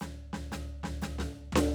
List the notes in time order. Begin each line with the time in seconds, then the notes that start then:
0.00 snare, floor tom, hi-hat pedal
0.33 snare, floor tom
0.52 snare, floor tom, hi-hat pedal
0.83 snare, floor tom
1.02 snare, floor tom, hi-hat pedal
1.18 snare, floor tom
1.52 snare, floor tom